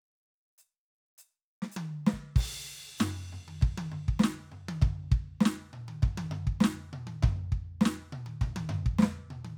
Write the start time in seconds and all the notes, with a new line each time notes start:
0.58 hi-hat pedal
1.18 hi-hat pedal
1.62 snare
1.72 hi-hat pedal
1.77 high tom
2.07 snare
2.14 kick
2.36 kick, crash, ride
2.98 snare, floor tom, hi-hat pedal
3.33 floor tom
3.48 high tom
3.62 kick, floor tom
3.78 high tom
3.92 floor tom
4.08 kick
4.20 snare
4.24 snare
4.52 floor tom
4.69 high tom
4.82 kick, floor tom
5.12 kick
5.41 snare
5.46 snare, hi-hat pedal
5.73 mid tom
5.88 high tom
6.03 kick, floor tom
6.18 high tom
6.32 floor tom
6.47 kick
6.61 snare
6.64 snare
6.93 mid tom
7.07 high tom
7.23 kick, floor tom
7.52 kick
7.81 snare
7.86 snare
8.13 mid tom
8.27 high tom
8.41 kick, floor tom
8.56 high tom
8.70 floor tom
8.86 kick
8.99 snare
9.03 snare
9.31 mid tom
9.45 high tom